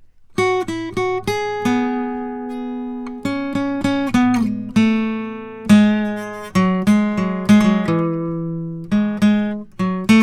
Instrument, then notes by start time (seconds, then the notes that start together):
acoustic guitar
0.39 F#4
0.69 E4
0.98 F#4
1.28 G#4
1.66 B3
3.26 C#4
3.57 C#4
3.86 C#4
4.15 B3
4.37 A3
4.77 A3
5.70 G#3
6.56 F#3
6.88 G#3
7.18 F#3
7.50 G#3
7.66 F#3
7.89 E3
8.93 G#3
9.23 G#3
9.80 F#3
10.10 A3